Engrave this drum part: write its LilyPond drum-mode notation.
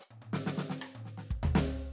\new DrumStaff \drummode { \time 4/4 \tempo 4 = 125 hhp16 tommh16 tommh16 sn16 sn16 sn16 sn16 ss16 tommh16 sn16 sn16 bd16 tomfh16 sn8. | }